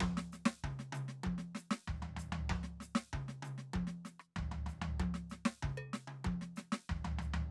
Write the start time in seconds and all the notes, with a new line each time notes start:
0.01 kick, high tom
0.09 kick
0.18 snare
0.33 snare, hi-hat pedal
0.46 snare
0.64 kick, mid tom
0.72 kick
0.80 snare
0.93 hi-hat pedal, mid tom
1.09 snare
1.24 kick, high tom
1.33 kick
1.39 snare
1.55 snare, hi-hat pedal
1.71 snare
1.88 kick, floor tom
2.03 floor tom
2.17 floor tom, hi-hat pedal
2.33 floor tom
2.50 kick, high tom
2.57 kick
2.64 snare
2.81 snare, hi-hat pedal
2.96 snare
3.14 kick, mid tom
3.29 snare
3.43 hi-hat pedal, mid tom
3.59 snare
3.74 kick, high tom
3.82 kick
3.88 snare
4.06 snare, hi-hat pedal
4.20 cross-stick
4.37 kick, floor tom
4.45 kick
4.52 floor tom
4.67 floor tom, hi-hat pedal
4.82 floor tom
5.00 kick, high tom
5.06 kick
5.15 snare
5.30 snare, hi-hat pedal
5.46 snare
5.63 kick, mid tom
5.70 kick
5.78 percussion
5.94 snare, hi-hat pedal
6.08 mid tom
6.25 kick, high tom
6.33 kick
6.42 snare
6.57 snare, hi-hat pedal
6.73 snare
6.90 kick, floor tom
6.97 kick
7.05 floor tom
7.19 floor tom, hi-hat pedal
7.34 floor tom